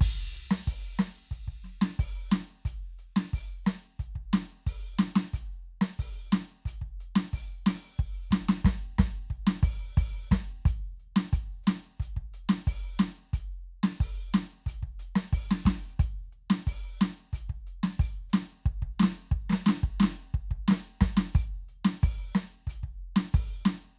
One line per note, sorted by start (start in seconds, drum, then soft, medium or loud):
0.01 kick loud
0.01 crash loud
0.32 closed hi-hat medium
0.32 hi-hat pedal medium
0.36 kick soft
0.51 snare loud
0.68 open hi-hat loud
0.68 kick medium
0.99 closed hi-hat soft
0.99 snare loud
0.99 hi-hat pedal soft
1.31 closed hi-hat medium
1.31 kick medium
1.48 kick soft
1.64 closed hi-hat medium
1.64 snare soft
1.64 hi-hat pedal soft
1.82 snare loud
2.00 open hi-hat loud
2.00 kick medium
2.30 closed hi-hat medium
2.30 snare loud
2.30 hi-hat pedal soft
2.66 closed hi-hat loud
2.66 kick medium
2.99 closed hi-hat medium
3.17 snare loud
3.34 open hi-hat loud
3.34 kick medium
3.65 closed hi-hat medium
3.65 snare loud
3.65 hi-hat pedal soft
4.00 closed hi-hat medium
4.00 kick medium
4.16 kick soft
4.33 closed hi-hat medium
4.33 snare loud
4.67 open hi-hat loud
4.67 kick medium
4.97 snare loud
4.97 hi-hat pedal soft
5.16 snare loud
5.34 closed hi-hat loud
5.34 kick medium
5.82 snare loud
5.99 open hi-hat loud
5.99 kick medium
6.31 closed hi-hat medium
6.31 snare loud
6.31 hi-hat pedal soft
6.66 closed hi-hat loud
6.66 kick medium
6.82 kick soft
7.01 closed hi-hat medium
7.16 snare loud
7.33 open hi-hat loud
7.33 kick medium
7.67 open hi-hat loud
7.67 snare loud
7.99 kick medium
8.31 kick medium
8.31 snare loud
8.31 hi-hat pedal soft
8.49 snare loud
8.65 kick loud
8.65 snare loud
8.99 kick loud
8.99 snare loud
9.30 kick medium
9.30 hi-hat pedal soft
9.47 snare loud
9.63 open hi-hat loud
9.63 kick loud
9.98 open hi-hat loud
9.98 kick loud
10.27 hi-hat pedal soft
10.32 kick loud
10.32 snare loud
10.66 closed hi-hat loud
10.66 kick loud
11.00 closed hi-hat soft
11.16 snare loud
11.33 closed hi-hat loud
11.33 kick loud
11.64 snare loud
11.64 hi-hat pedal soft
11.68 closed hi-hat loud
12.00 closed hi-hat loud
12.00 kick medium
12.17 kick medium
12.34 closed hi-hat medium
12.49 snare loud
12.68 open hi-hat loud
12.68 kick loud
12.99 snare loud
12.99 hi-hat pedal soft
13.34 closed hi-hat loud
13.34 kick medium
13.34 snare soft
13.84 snare loud
14.01 open hi-hat loud
14.01 kick loud
14.33 closed hi-hat medium
14.33 snare loud
14.33 hi-hat pedal soft
14.67 closed hi-hat loud
14.67 kick medium
14.83 kick medium
15.00 closed hi-hat medium
15.16 snare loud
15.33 open hi-hat loud
15.33 kick loud
15.51 snare loud
15.66 kick loud
15.66 snare loud
15.93 hi-hat pedal soft
16.00 closed hi-hat loud
16.00 kick loud
16.33 closed hi-hat soft
16.50 snare loud
16.67 open hi-hat loud
16.67 kick medium
17.00 closed hi-hat medium
17.00 snare loud
17.00 hi-hat pedal soft
17.33 closed hi-hat loud
17.33 kick medium
17.50 kick medium
17.67 closed hi-hat medium
17.84 snare loud
18.00 open hi-hat loud
18.00 kick loud
18.30 kick soft
18.30 snare loud
18.30 hi-hat pedal soft
18.66 kick loud
18.83 kick medium
18.87 crash soft
18.87 ride soft
19.00 snare loud
19.03 snare loud
19.32 kick loud
19.50 snare loud
19.53 snare loud
19.67 snare loud
19.69 snare loud
19.84 kick medium
19.84 snare soft
20.00 snare loud
20.03 snare loud
20.34 kick medium
20.51 kick medium
20.55 crash soft
20.68 snare loud
20.71 snare loud
21.01 kick loud
21.01 snare loud
21.17 snare loud
21.35 open hi-hat loud
21.35 kick loud
21.69 closed hi-hat soft
21.69 kick soft
21.85 snare loud
21.91 cross-stick soft
22.03 open hi-hat loud
22.03 kick loud
22.35 snare loud
22.35 hi-hat pedal soft
22.67 closed hi-hat loud
22.67 kick medium
22.84 kick medium
23.16 snare loud
23.34 open hi-hat loud
23.34 kick loud
23.65 snare loud
23.65 hi-hat pedal soft